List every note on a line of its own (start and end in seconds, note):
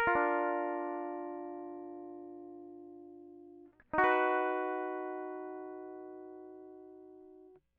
0.00 1.58 A#4
0.08 3.73 F4
0.16 3.71 D4
3.94 7.54 D#4
3.99 7.60 F#4
4.04 6.31 B4